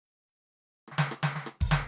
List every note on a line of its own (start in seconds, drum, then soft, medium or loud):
0.88 cross-stick soft
0.88 snare soft
0.98 snare loud
1.11 cross-stick medium
1.23 snare loud
1.35 snare medium
1.46 cross-stick medium
1.61 open hi-hat loud
1.61 kick medium
1.71 snare loud
1.71 hi-hat pedal medium